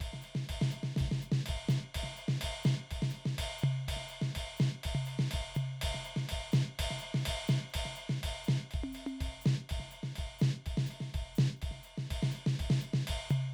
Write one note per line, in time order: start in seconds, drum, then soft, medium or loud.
0.01 kick soft
0.01 ride medium
0.14 snare soft
0.22 hi-hat pedal medium
0.22 ride soft
0.36 snare medium
0.50 kick soft
0.50 ride bell medium
0.56 kick soft
0.62 snare medium
0.72 hi-hat pedal medium
0.72 ride soft
0.84 snare medium
0.97 kick soft
0.97 snare medium
0.97 ride medium
1.08 kick soft
1.12 snare medium
1.22 hi-hat pedal medium
1.33 snare medium
1.47 kick soft
1.47 ride bell medium
1.56 kick soft
1.69 snare loud
1.69 hi-hat pedal medium
1.95 kick soft
1.95 ride bell loud
2.02 kick soft
2.02 snare soft
2.17 hi-hat pedal medium
2.17 ride soft
2.29 snare medium
2.42 kick soft
2.42 ride bell loud
2.49 kick soft
2.64 snare loud
2.64 hi-hat pedal medium
2.91 kick soft
2.91 ride medium
2.98 kick soft
3.03 snare medium
3.11 hi-hat pedal medium
3.15 ride soft
3.26 snare medium
3.39 kick soft
3.39 ride loud
3.45 kick soft
3.59 hi-hat pedal medium
3.64 floor tom loud
3.89 kick soft
3.89 ride loud
3.97 snare soft
4.09 hi-hat pedal medium
4.09 ride soft
4.22 snare medium
4.36 kick soft
4.36 ride loud
4.57 snare loud
4.57 hi-hat pedal medium
4.84 kick soft
4.84 ride medium
4.92 kick soft
4.96 floor tom loud
5.06 hi-hat pedal medium
5.06 ride medium
5.20 snare medium
5.32 kick soft
5.32 ride loud
5.40 kick soft
5.55 hi-hat pedal medium
5.55 floor tom loud
5.82 kick soft
5.82 ride loud
5.90 kick soft
5.95 snare soft
6.05 hi-hat pedal medium
6.05 ride soft
6.17 snare medium
6.30 kick soft
6.30 ride loud
6.52 snare loud
6.52 hi-hat pedal medium
6.80 kick soft
6.80 ride bell loud
6.86 kick soft
6.91 snare soft
6.99 hi-hat pedal medium
6.99 ride soft
7.15 snare medium
7.21 hi-hat pedal soft
7.26 kick soft
7.26 ride bell loud
7.48 snare loud
7.48 hi-hat pedal medium
7.70 hi-hat pedal soft
7.74 kick soft
7.74 ride bell loud
7.81 kick soft
7.86 snare soft
7.96 hi-hat pedal medium
7.96 ride soft
8.10 snare medium
8.24 kick soft
8.24 ride bell loud
8.45 hi-hat pedal medium
8.49 snare loud
8.72 kick soft
8.72 ride bell medium
8.81 kick soft
8.81 high tom medium
8.93 hi-hat pedal medium
8.93 ride medium
9.07 closed hi-hat soft
9.07 high tom medium
9.21 kick soft
9.21 ride bell medium
9.28 kick soft
9.42 hi-hat pedal medium
9.47 snare loud
9.70 kick soft
9.70 ride bell medium
9.78 kick soft
9.78 snare soft
9.91 hi-hat pedal medium
9.91 ride soft
10.04 snare medium
10.16 kick soft
10.16 ride bell medium
10.25 kick soft
10.39 snare loud
10.39 hi-hat pedal medium
10.67 kick soft
10.67 ride bell medium
10.73 kick soft
10.78 snare medium
10.87 hi-hat pedal medium
10.91 ride soft
11.01 snare medium
11.15 kick soft
11.15 ride bell medium
11.21 kick soft
11.36 snare loud
11.36 hi-hat pedal medium
11.57 hi-hat pedal soft
11.62 kick soft
11.62 ride medium
11.69 kick soft
11.69 snare soft
11.84 hi-hat pedal medium
11.84 ride soft
11.98 snare medium
12.11 kick soft
12.11 ride bell medium
12.17 kick soft
12.23 snare medium
12.32 hi-hat pedal medium
12.32 ride soft
12.47 snare medium
12.60 kick soft
12.60 ride bell medium
12.66 kick soft
12.71 snare loud
12.81 hi-hat pedal medium
12.81 ride soft
12.94 snare medium
13.08 kick soft
13.08 ride bell loud
13.16 kick soft
13.30 hi-hat pedal medium
13.30 floor tom loud